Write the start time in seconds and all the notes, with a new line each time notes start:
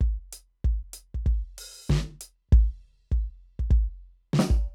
0.01 kick
0.33 closed hi-hat
0.65 kick
0.94 closed hi-hat
1.15 kick
1.26 kick
1.30 crash
1.58 open hi-hat
1.89 kick, snare, hi-hat pedal
2.21 closed hi-hat
2.49 kick
2.53 kick
2.57 crash
3.12 kick
3.60 kick
3.71 kick
4.34 snare
4.39 snare
4.50 kick